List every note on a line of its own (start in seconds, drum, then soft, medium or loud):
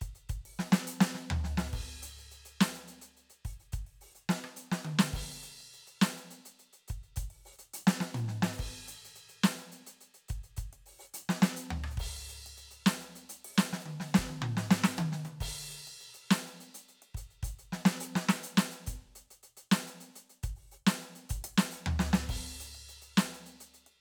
0.01 closed hi-hat medium
0.01 kick soft
0.15 closed hi-hat soft
0.29 closed hi-hat medium
0.29 kick soft
0.45 open hi-hat medium
0.59 snare medium
0.72 snare loud
0.87 closed hi-hat loud
1.00 snare loud
1.14 snare medium
1.30 floor tom loud
1.44 snare medium
1.57 snare medium
1.67 hi-hat pedal soft
1.73 kick soft
1.73 crash medium
1.82 kick soft
2.02 closed hi-hat loud
2.18 closed hi-hat soft
2.31 closed hi-hat medium
2.45 closed hi-hat medium
2.61 snare loud
2.74 closed hi-hat medium
2.88 closed hi-hat medium
3.01 closed hi-hat medium
3.17 closed hi-hat soft
3.30 closed hi-hat medium
3.45 open hi-hat medium
3.45 kick soft
3.59 open hi-hat soft
3.72 closed hi-hat medium
3.72 kick soft
3.79 kick soft
3.82 kick soft
3.87 open hi-hat soft
4.01 open hi-hat medium
4.15 open hi-hat medium
4.29 snare loud
4.44 cross-stick medium
4.56 closed hi-hat medium
4.72 snare medium
4.85 high tom loud
4.99 snare loud
5.13 kick soft
5.13 crash medium
5.19 kick soft
5.21 kick soft
5.32 closed hi-hat soft
5.43 closed hi-hat medium
5.60 closed hi-hat soft
5.73 closed hi-hat soft
5.87 closed hi-hat medium
6.01 snare loud
6.17 closed hi-hat medium
6.30 closed hi-hat medium
6.45 closed hi-hat medium
6.59 closed hi-hat soft
6.73 closed hi-hat medium
6.88 closed hi-hat medium
6.88 kick soft
7.03 closed hi-hat soft
7.16 closed hi-hat loud
7.16 kick soft
7.23 kick soft
7.30 open hi-hat soft
7.45 open hi-hat medium
7.52 hi-hat pedal soft
7.59 closed hi-hat medium
7.73 closed hi-hat loud
7.87 snare loud
8.00 snare medium
8.14 hi-hat pedal medium
8.14 mid tom loud
8.28 snare soft
8.42 snare loud
8.53 hi-hat pedal medium
8.58 kick soft
8.58 crash medium
8.68 kick soft
8.88 closed hi-hat medium
9.05 closed hi-hat medium
9.15 closed hi-hat medium
9.29 closed hi-hat medium
9.43 snare loud
9.58 closed hi-hat medium
9.72 closed hi-hat medium
9.87 closed hi-hat medium
10.01 closed hi-hat medium
10.14 closed hi-hat medium
10.28 closed hi-hat medium
10.28 kick soft
10.36 kick soft
10.38 kick soft
10.43 closed hi-hat soft
10.57 closed hi-hat medium
10.57 kick soft
10.73 closed hi-hat soft
10.86 open hi-hat medium
10.99 open hi-hat medium
11.04 hi-hat pedal soft
11.14 closed hi-hat loud
11.29 snare loud
11.42 snare loud
11.56 closed hi-hat loud
11.70 floor tom loud
11.84 cross-stick medium
11.91 hi-hat pedal soft
11.97 kick soft
11.97 crash loud
12.03 kick soft
12.06 kick soft
12.17 closed hi-hat soft
12.29 closed hi-hat medium
12.46 closed hi-hat medium
12.57 closed hi-hat medium
12.71 closed hi-hat medium
12.86 snare loud
13.01 closed hi-hat medium
13.15 closed hi-hat medium
13.29 closed hi-hat loud
13.44 open hi-hat medium
13.55 snare loud
13.55 hi-hat pedal soft
13.73 snare medium
13.80 hi-hat pedal medium
13.86 high tom medium
14.00 snare medium
14.09 hi-hat pedal soft
14.14 kick soft
14.14 snare loud
14.29 high tom medium
14.42 mid tom loud
14.57 snare medium
14.71 snare loud
14.84 snare loud
14.97 hi-hat pedal medium
14.97 high tom loud
15.12 snare medium
15.24 hi-hat pedal medium
15.24 high tom medium
15.40 kick soft
15.40 crash loud
15.70 closed hi-hat medium
15.87 closed hi-hat medium
16.00 closed hi-hat medium
16.14 closed hi-hat medium
16.31 snare loud
16.46 closed hi-hat medium
16.60 closed hi-hat medium
16.74 closed hi-hat medium
16.88 closed hi-hat soft
17.02 closed hi-hat soft
17.14 closed hi-hat medium
17.14 kick soft
17.30 closed hi-hat soft
17.43 closed hi-hat loud
17.43 kick soft
17.48 kick soft
17.59 closed hi-hat medium
17.72 snare medium
17.85 snare loud
18.00 open hi-hat loud
18.00 hi-hat pedal medium
18.15 snare loud
18.29 snare loud
18.43 closed hi-hat loud
18.57 snare loud
18.71 closed hi-hat medium
18.87 closed hi-hat loud
18.87 kick soft
19.15 closed hi-hat medium
19.30 closed hi-hat medium
19.43 closed hi-hat medium
19.57 closed hi-hat medium
19.71 snare loud
19.87 closed hi-hat medium
20.00 closed hi-hat medium
20.13 closed hi-hat medium
20.13 hi-hat pedal soft
20.29 open hi-hat soft
20.43 closed hi-hat medium
20.43 kick soft
20.49 kick soft
20.53 open hi-hat soft
20.53 kick soft
20.71 open hi-hat medium
20.71 hi-hat pedal soft
20.87 snare loud
21.02 closed hi-hat soft
21.15 closed hi-hat medium
21.29 closed hi-hat loud
21.29 kick soft
21.36 kick soft
21.44 closed hi-hat loud
21.58 snare loud
21.71 open hi-hat medium
21.86 floor tom loud
21.99 snare loud
22.13 snare loud
22.29 kick soft
22.29 crash loud
22.37 kick soft
22.60 closed hi-hat medium
22.74 closed hi-hat soft
22.89 closed hi-hat medium
23.02 closed hi-hat medium
23.17 snare loud
23.34 closed hi-hat medium
23.46 closed hi-hat medium
23.60 closed hi-hat medium
23.74 closed hi-hat soft
23.86 closed hi-hat soft